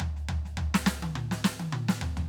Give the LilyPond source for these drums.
\new DrumStaff \drummode { \time 4/4 \tempo 4 = 105 tomfh16 sn16 tomfh16 sn16 tomfh16 sn16 sn16 tommh16 toml16 sn16 sn16 tommh16 toml16 sn16 tomfh16 tomfh16 | }